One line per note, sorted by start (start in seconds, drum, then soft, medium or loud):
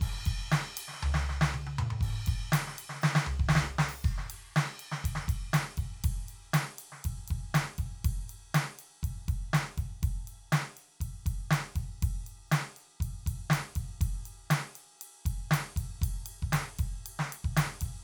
0.01 kick medium
0.01 ride loud
0.26 kick medium
0.26 ride medium
0.49 kick soft
0.49 snare loud
0.49 ride medium
0.77 ride loud
0.88 snare soft
0.94 snare soft
0.98 snare soft
1.03 floor tom loud
1.14 snare loud
1.29 snare medium
1.41 snare loud
1.54 high tom loud
1.67 high tom medium
1.79 mid tom loud
1.90 mid tom medium
2.01 kick medium
2.01 ride medium
2.26 kick medium
2.26 ride medium
2.48 kick soft
2.52 snare loud
2.52 ride loud
2.67 snare medium
2.78 ride medium
2.89 snare medium
2.94 snare soft
3.02 snare loud
3.02 hi-hat pedal loud
3.15 snare loud
3.26 floor tom loud
3.40 kick medium
3.49 snare loud
3.55 snare loud
3.64 cross-stick medium
3.79 snare loud
3.89 open hi-hat medium
4.04 kick medium
4.04 crash medium
4.18 snare soft
4.30 ride medium
4.56 snare loud
4.56 ride medium
4.79 ride medium
4.92 snare medium
5.04 kick medium
5.04 ride medium
5.15 snare medium
5.28 kick medium
5.28 ride medium
5.53 snare loud
5.53 ride loud
5.77 kick medium
5.77 ride medium
6.04 kick medium
6.04 ride loud
6.29 ride medium
6.54 snare loud
6.54 ride loud
6.79 ride medium
6.92 snare soft
7.04 kick medium
7.04 ride medium
7.28 kick medium
7.28 ride medium
7.54 snare loud
7.54 ride medium
7.78 kick medium
7.78 ride medium
8.05 kick medium
8.05 ride loud
8.30 ride medium
8.54 snare loud
8.54 ride loud
8.79 ride medium
9.03 kick medium
9.03 ride medium
9.28 kick medium
9.28 ride medium
9.53 snare loud
9.53 ride medium
9.78 kick medium
9.78 ride medium
10.03 kick medium
10.03 ride medium
10.27 ride medium
10.52 snare loud
10.52 ride medium
10.77 ride medium
11.01 kick medium
11.01 ride medium
11.26 kick medium
11.26 ride medium
11.51 snare loud
11.51 ride medium
11.76 kick medium
11.76 ride medium
12.02 kick medium
12.02 ride medium
12.27 ride medium
12.47 hi-hat pedal soft
12.52 snare loud
12.52 ride medium
12.76 ride soft
13.00 kick medium
13.00 ride medium
13.26 kick medium
13.26 ride medium
13.50 snare loud
13.50 hi-hat pedal soft
13.50 ride loud
13.76 kick medium
13.76 ride medium
14.01 kick medium
14.01 ride medium
14.26 ride medium
14.50 snare loud
14.50 ride loud
14.76 ride medium
14.97 hi-hat pedal soft
14.97 ride medium
15.26 kick medium
15.26 ride medium
15.50 snare loud
15.50 hi-hat pedal soft
15.50 ride loud
15.76 kick medium
15.76 ride medium
16.02 kick medium
16.02 ride loud
16.26 ride medium
16.42 kick medium
16.52 snare loud
16.52 ride loud
16.79 kick medium
16.79 ride medium
17.06 ride medium
17.19 snare medium
17.32 ride medium
17.44 kick medium
17.57 snare loud
17.57 ride loud
17.81 kick medium
17.81 ride medium